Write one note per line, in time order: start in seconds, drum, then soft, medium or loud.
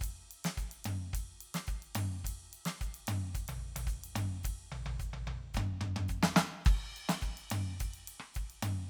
0.01 kick medium
0.01 hi-hat pedal medium
0.01 ride medium
0.31 ride medium
0.45 snare loud
0.45 ride medium
0.57 kick medium
0.57 hi-hat pedal medium
0.72 ride medium
0.85 high tom loud
0.85 ride medium
1.13 kick medium
1.13 hi-hat pedal medium
1.13 ride medium
1.41 ride medium
1.54 snare medium
1.54 ride medium
1.67 kick medium
1.67 hi-hat pedal medium
1.82 ride soft
1.95 high tom loud
1.95 ride medium
2.25 kick medium
2.25 hi-hat pedal medium
2.25 ride medium
2.53 ride medium
2.66 snare medium
2.66 ride medium
2.81 kick medium
2.81 hi-hat pedal medium
2.94 ride medium
3.07 high tom loud
3.07 ride medium
3.35 kick medium
3.35 hi-hat pedal medium
3.35 ride medium
3.48 floor tom loud
3.48 ride medium
3.76 floor tom medium
3.76 ride medium
3.87 kick medium
3.87 hi-hat pedal medium
4.04 ride medium
4.16 high tom loud
4.16 ride medium
4.43 kick medium
4.43 hi-hat pedal medium
4.43 ride medium
4.72 floor tom medium
4.86 floor tom loud
5.00 kick medium
5.00 hi-hat pedal medium
5.13 floor tom medium
5.27 floor tom loud
5.54 kick medium
5.54 hi-hat pedal medium
5.54 high tom loud
5.81 high tom loud
5.96 high tom loud
6.08 kick medium
6.08 hi-hat pedal medium
6.23 snare loud
6.36 snare loud
6.65 kick loud
6.65 hi-hat pedal medium
6.65 ride medium
6.92 kick soft
6.96 ride soft
7.09 snare medium
7.09 ride medium
7.21 kick medium
7.21 hi-hat pedal soft
7.37 ride soft
7.51 high tom loud
7.51 ride medium
7.80 kick medium
7.80 hi-hat pedal medium
7.80 ride medium
7.94 ride soft
8.08 ride medium
8.20 cross-stick medium
8.34 kick medium
8.34 hi-hat pedal medium
8.34 ride medium
8.50 ride soft
8.63 high tom loud
8.63 ride medium